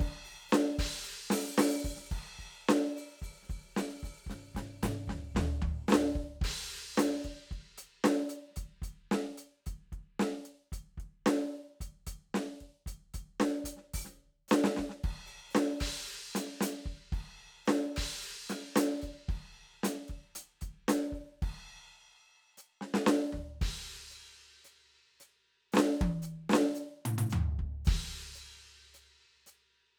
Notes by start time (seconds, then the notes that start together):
0.01 kick, crash
0.25 open hi-hat
0.50 snare, hi-hat pedal
0.79 kick, crash
1.04 open hi-hat
1.31 open hi-hat, snare
1.59 open hi-hat, snare
1.85 kick
1.97 snare
2.12 kick, crash
2.40 kick
2.69 snare
2.97 open hi-hat
3.22 open hi-hat, kick
3.43 snare
3.50 open hi-hat, kick
3.77 open hi-hat, snare
4.04 open hi-hat, kick, snare
4.27 kick, snare
4.31 mid tom
4.55 kick, snare, mid tom
4.84 kick, snare, mid tom
5.08 kick, snare, floor tom
5.36 kick, snare, floor tom
5.63 kick, floor tom
5.89 snare, hi-hat pedal
5.93 snare
6.16 kick
6.42 kick, crash
6.96 closed hi-hat, snare, hi-hat pedal
7.25 kick, closed hi-hat
7.52 kick, closed hi-hat
7.78 closed hi-hat
8.05 snare
8.10 snare
8.30 closed hi-hat
8.51 snare
8.57 closed hi-hat, kick
8.83 closed hi-hat, kick
9.12 snare
9.38 closed hi-hat
9.67 closed hi-hat, kick
9.93 kick, closed hi-hat
10.20 snare
10.46 closed hi-hat
10.73 closed hi-hat, kick
10.98 kick, closed hi-hat
11.27 snare
11.81 closed hi-hat, kick
12.07 closed hi-hat, kick
12.35 snare
12.61 kick, closed hi-hat
12.87 closed hi-hat, kick
13.15 closed hi-hat, kick
13.41 snare
13.65 closed hi-hat, kick
13.78 snare
13.83 snare
13.94 open hi-hat, kick
14.05 snare
14.49 snare, hi-hat pedal
14.65 snare
14.77 kick, snare
14.90 snare
15.04 kick, crash
15.27 open hi-hat
15.51 hi-hat pedal
15.56 snare
15.81 kick, crash
16.08 closed hi-hat
16.36 closed hi-hat, snare
16.61 closed hi-hat, snare
16.86 kick
17.13 kick, crash
17.39 open hi-hat
17.66 snare, hi-hat pedal
17.97 kick, crash
18.23 closed hi-hat
18.50 closed hi-hat, snare
18.77 closed hi-hat, snare
19.02 closed hi-hat, kick
19.29 kick, crash
19.53 closed hi-hat
19.84 closed hi-hat, snare
20.09 kick, closed hi-hat
20.36 closed hi-hat
20.62 closed hi-hat, kick
20.89 open hi-hat, snare
21.13 kick, open hi-hat
21.43 kick, crash
22.58 hi-hat pedal
22.82 snare
22.95 snare
23.07 snare
23.33 kick, floor tom
23.62 kick, crash
24.11 hi-hat pedal
24.65 hi-hat pedal
25.21 hi-hat pedal
25.73 snare, hi-hat pedal
25.78 snare
26.02 kick, high tom
26.23 hi-hat pedal
26.50 snare
26.54 snare
26.76 hi-hat pedal
27.06 mid tom
27.19 mid tom
27.30 floor tom, hi-hat pedal
27.60 kick
27.86 kick, hi-hat pedal, crash
28.36 hi-hat pedal
28.95 hi-hat pedal
29.47 hi-hat pedal